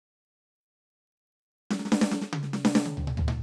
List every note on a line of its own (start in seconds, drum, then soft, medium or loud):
1.71 snare loud
1.79 snare medium
1.85 snare medium
1.92 snare loud
2.01 snare loud
2.11 snare loud
2.33 high tom loud
2.43 snare soft
2.53 snare medium
2.65 snare loud
2.75 snare loud
2.86 high tom loud
2.97 floor tom loud
3.07 mid tom loud
3.17 floor tom loud
3.28 mid tom loud